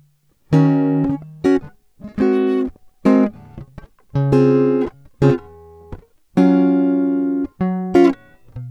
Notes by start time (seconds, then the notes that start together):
0.54 D#3 C#4 F#4 A#4
1.45 C#4 F#4 A#4
2.19 G#3 C4 F#4
2.25 A#4
3.06 G#3 C4 F#4 A#4
4.17 C#3
4.33 C4 F4 G#4
5.23 C#3 C4 F4 G#4
6.38 F#3 C#4 F4 A#4
7.62 F#3
7.95 C#4 F4 A#4